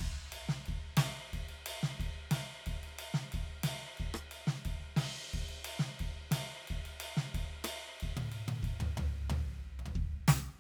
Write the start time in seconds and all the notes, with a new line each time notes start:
0.01 kick, ride
0.32 ride
0.49 snare
0.66 kick, ride
0.97 snare, ride
1.34 kick, ride
1.49 ride
1.66 ride
1.83 snare
2.00 kick, ride
2.31 snare, ride
2.66 kick, ride
2.83 ride
2.99 ride
3.14 snare
3.32 kick, ride
3.64 snare, ride
3.82 snare
3.98 kick, ride
4.14 cross-stick
4.32 ride
4.47 snare
4.65 kick, ride
4.80 snare
4.97 snare, ride
5.28 snare
5.34 kick, ride
5.49 ride
5.65 ride
5.80 snare
6.00 kick, ride
6.32 snare, ride
6.68 kick, ride
6.86 ride
7.00 ride
7.17 snare
7.35 kick, ride
7.64 cross-stick, ride
8.00 kick, ride
8.17 high tom
8.32 ride
8.48 high tom
8.63 kick, ride
8.80 floor tom
8.97 floor tom
9.30 floor tom
9.79 high tom
9.86 floor tom
9.96 kick
10.28 snare, percussion